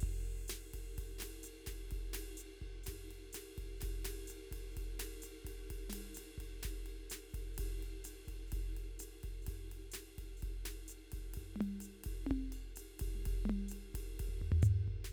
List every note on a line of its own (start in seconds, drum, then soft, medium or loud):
0.01 kick medium
0.01 crash medium
0.49 snare medium
0.49 hi-hat pedal medium
0.49 ride medium
0.74 kick soft
0.74 ride soft
0.79 kick soft
0.95 kick soft
0.95 hi-hat pedal soft
0.95 ride medium
1.04 kick soft
1.19 snare soft
1.19 ride medium
1.44 hi-hat pedal medium
1.44 ride soft
1.67 kick soft
1.67 snare soft
1.67 ride medium
1.73 kick soft
1.91 kick soft
1.91 ride soft
1.98 kick soft
2.13 snare soft
2.13 ride medium
2.38 hi-hat pedal medium
2.62 kick soft
2.62 ride soft
2.68 kick soft
2.84 snare soft
2.84 hi-hat pedal soft
2.84 ride medium
2.89 kick soft
2.94 kick soft
3.11 ride soft
3.33 snare soft
3.33 hi-hat pedal medium
3.33 ride medium
3.58 kick soft
3.58 ride soft
3.64 kick soft
3.78 snare soft
3.78 hi-hat pedal soft
3.82 kick soft
3.82 ride medium
3.89 kick soft
4.05 snare soft
4.05 ride medium
4.28 hi-hat pedal medium
4.28 ride soft
4.52 kick soft
4.52 ride medium
4.57 kick soft
4.72 hi-hat pedal soft
4.77 kick soft
4.77 ride soft
4.83 kick soft
4.99 snare soft
4.99 ride medium
5.22 hi-hat pedal medium
5.22 ride soft
5.45 kick soft
5.45 ride medium
5.50 kick soft
5.71 kick soft
5.71 ride medium
5.76 kick soft
5.90 snare soft
5.90 mid tom medium
5.90 ride medium
6.15 hi-hat pedal medium
6.15 ride medium
6.38 kick soft
6.38 ride soft
6.44 kick soft
6.60 snare soft
6.60 hi-hat pedal soft
6.60 ride medium
6.65 kick soft
6.71 kick soft
6.86 ride soft
7.10 snare soft
7.10 hi-hat pedal medium
7.10 ride medium
7.31 kick soft
7.31 hi-hat pedal soft
7.35 ride soft
7.40 kick soft
7.55 hi-hat pedal soft
7.55 ride medium
7.59 kick soft
7.65 kick soft
7.83 ride soft
8.05 snare soft
8.05 hi-hat pedal medium
8.05 ride medium
8.26 kick soft
8.26 hi-hat pedal soft
8.26 ride soft
8.33 kick soft
8.48 hi-hat pedal soft
8.52 kick soft
8.52 ride medium
8.59 kick soft
8.77 ride soft
9.00 snare soft
9.00 hi-hat pedal medium
9.00 ride medium
9.21 kick soft
9.21 hi-hat pedal soft
9.21 ride soft
9.30 kick soft
9.43 hi-hat pedal soft
9.47 kick soft
9.47 snare soft
9.47 ride medium
9.54 kick soft
9.72 ride soft
9.92 snare soft
9.92 hi-hat pedal medium
9.92 ride medium
10.19 kick soft
10.19 ride soft
10.24 kick soft
10.38 hi-hat pedal soft
10.43 kick soft
10.43 ride soft
10.49 kick soft
10.65 snare soft
10.65 ride medium
10.88 hi-hat pedal medium
10.88 ride soft
11.11 kick soft
11.11 hi-hat pedal soft
11.11 ride soft
11.19 kick soft
11.32 hi-hat pedal soft
11.32 ride medium
11.38 kick soft
11.43 kick soft
11.56 mid tom medium
11.61 mid tom loud
11.61 ride soft
11.81 hi-hat pedal medium
11.81 ride soft
12.04 kick soft
12.04 ride medium
12.12 kick soft
12.27 high tom medium
12.31 kick soft
12.31 high tom loud
12.37 kick soft
12.53 ride bell soft
12.76 hi-hat pedal medium
12.76 ride medium
12.99 kick soft
12.99 hi-hat pedal soft
12.99 ride medium
13.08 kick soft
13.16 mid tom soft
13.26 kick soft
13.26 ride medium
13.33 kick soft
13.46 mid tom medium
13.50 mid tom loud
13.59 mid tom soft
13.69 hi-hat pedal medium
13.69 ride soft
13.92 kick soft
13.92 hi-hat pedal soft
13.96 ride medium
14.00 kick soft
14.20 kick soft
14.20 ride medium
14.26 kick soft
14.26 floor tom soft
14.42 floor tom medium
14.52 floor tom loud
14.63 hi-hat pedal medium
14.63 floor tom loud
14.88 kick soft
14.94 kick soft
15.05 snare soft
15.05 hi-hat pedal soft